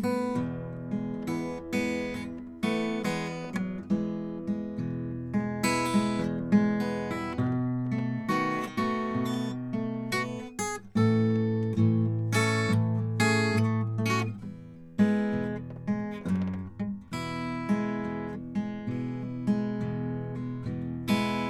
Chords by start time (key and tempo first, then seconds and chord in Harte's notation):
E major, 68 BPM
0.00 A:maj/5
0.34 E:maj
7.39 B:7(11)/4
10.92 A:maj/5
14.45 E:maj